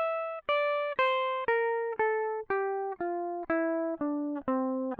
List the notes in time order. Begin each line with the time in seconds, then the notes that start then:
0.00 E5
0.49 D5
0.99 C5
1.49 A#4
2.00 A4
2.51 G4
3.01 F4
3.50 E4
4.02 D4
4.49 C4